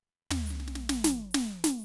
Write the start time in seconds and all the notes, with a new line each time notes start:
0.30 snare, floor tom
0.46 hi-hat pedal
0.50 snare
0.55 snare
0.60 snare
0.68 snare
0.75 snare
0.89 snare, hi-hat pedal
1.04 snare
1.31 snare, hi-hat pedal
1.64 snare
1.78 hi-hat pedal